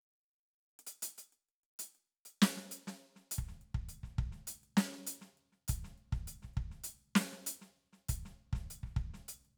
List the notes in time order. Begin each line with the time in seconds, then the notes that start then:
0.79 closed hi-hat
0.87 closed hi-hat
1.02 closed hi-hat
1.18 closed hi-hat
1.32 closed hi-hat
1.49 closed hi-hat
1.64 closed hi-hat
1.79 closed hi-hat
1.95 closed hi-hat
2.25 closed hi-hat
2.42 snare
2.57 snare
2.71 closed hi-hat
2.87 snare
3.04 closed hi-hat
3.16 snare
3.31 closed hi-hat
3.38 kick
3.48 snare
3.61 closed hi-hat
3.75 kick
3.89 closed hi-hat
4.03 kick, snare
4.18 kick, closed hi-hat
4.32 snare
4.47 closed hi-hat, snare
4.63 closed hi-hat
4.77 snare
4.92 snare
5.07 closed hi-hat
5.21 snare
5.37 closed hi-hat
5.52 snare
5.68 closed hi-hat, kick
5.84 snare
5.98 closed hi-hat
6.12 kick, snare
6.27 closed hi-hat
6.42 kick, snare
6.54 kick, closed hi-hat
6.71 snare
6.84 closed hi-hat
7.00 closed hi-hat
7.15 snare
7.20 snare
7.33 snare
7.46 closed hi-hat
7.62 snare
7.77 closed hi-hat
7.93 snare
8.09 closed hi-hat, kick
8.25 snare
8.38 closed hi-hat
8.53 kick, snare
8.62 kick
8.70 closed hi-hat
8.83 kick, snare
8.96 kick, closed hi-hat
9.14 snare
9.28 closed hi-hat
9.45 closed hi-hat